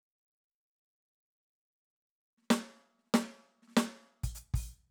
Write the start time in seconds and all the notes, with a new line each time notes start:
2.37 snare
2.42 snare
2.48 snare
2.50 snare
2.98 snare
3.03 snare
3.06 snare
3.14 snare
3.62 snare
3.67 snare
3.70 snare
3.76 snare
4.23 closed hi-hat, kick
4.35 hi-hat pedal
4.54 open hi-hat, kick